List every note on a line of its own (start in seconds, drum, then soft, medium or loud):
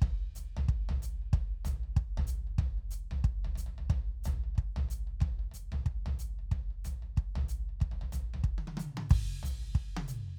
0.01 kick medium
0.01 floor tom soft
0.04 floor tom loud
0.36 floor tom medium
0.36 hi-hat pedal medium
0.57 floor tom loud
0.69 kick medium
0.69 floor tom soft
0.90 floor tom loud
1.03 floor tom soft
1.03 hi-hat pedal medium
1.22 floor tom soft
1.34 kick medium
1.34 floor tom medium
1.66 floor tom loud
1.66 hi-hat pedal medium
1.84 floor tom soft
1.97 kick medium
1.97 floor tom soft
2.18 floor tom loud
2.28 floor tom soft
2.28 hi-hat pedal medium
2.48 floor tom soft
2.59 kick medium
2.59 floor tom loud
2.78 kick soft
2.78 floor tom soft
2.92 floor tom soft
2.92 hi-hat pedal medium
3.12 floor tom loud
3.25 kick medium
3.25 floor tom soft
3.45 floor tom medium
3.56 floor tom medium
3.56 hi-hat pedal medium
3.67 floor tom medium
3.79 floor tom medium
3.91 kick medium
3.91 floor tom loud
4.25 floor tom loud
4.25 hi-hat pedal medium
4.44 floor tom soft
4.56 kick medium
4.56 floor tom soft
4.77 floor tom loud
4.89 floor tom soft
4.89 hi-hat pedal medium
5.08 floor tom soft
5.21 kick medium
5.21 floor tom loud
5.40 floor tom soft
5.52 floor tom medium
5.52 hi-hat pedal medium
5.73 floor tom loud
5.87 kick medium
5.87 floor tom soft
6.07 floor tom loud
6.20 floor tom soft
6.20 hi-hat pedal medium
6.40 floor tom soft
6.52 kick medium
6.52 floor tom medium
6.71 floor tom soft
6.85 floor tom medium
6.85 hi-hat pedal medium
7.03 floor tom soft
7.17 kick medium
7.17 floor tom soft
7.36 floor tom loud
7.42 floor tom soft
7.49 floor tom soft
7.49 hi-hat pedal medium
7.70 floor tom soft
7.81 kick medium
7.81 floor tom medium
7.92 floor tom medium
8.02 floor tom medium
8.13 floor tom loud
8.13 hi-hat pedal medium
8.35 floor tom loud
8.44 kick medium
8.49 high tom soft
8.68 high tom loud
8.78 hi-hat pedal medium
8.78 high tom loud
8.98 high tom loud
9.11 kick loud
9.11 crash medium
9.44 floor tom loud
9.44 hi-hat pedal medium
9.63 high tom soft
9.75 kick medium
9.75 floor tom soft
9.97 high tom loud
10.09 floor tom soft
10.09 hi-hat pedal medium
10.28 high tom soft